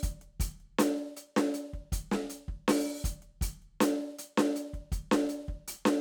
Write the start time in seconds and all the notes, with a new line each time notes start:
0.00 closed hi-hat, kick, hi-hat pedal
0.22 closed hi-hat
0.40 closed hi-hat, kick
0.61 closed hi-hat
0.79 closed hi-hat, snare
0.98 closed hi-hat
1.17 closed hi-hat
1.37 snare
1.55 closed hi-hat
1.74 kick, closed hi-hat
1.93 closed hi-hat, kick
2.12 snare
2.30 closed hi-hat
2.49 kick, closed hi-hat
2.69 open hi-hat, snare
3.03 closed hi-hat, kick, hi-hat pedal
3.23 closed hi-hat
3.42 closed hi-hat, kick
3.62 closed hi-hat
3.81 closed hi-hat, snare
4.01 closed hi-hat
4.19 closed hi-hat
4.38 snare
4.56 closed hi-hat
4.74 kick, closed hi-hat
4.92 closed hi-hat, kick
5.12 snare
5.30 closed hi-hat
5.48 kick, closed hi-hat
5.68 open hi-hat
5.86 snare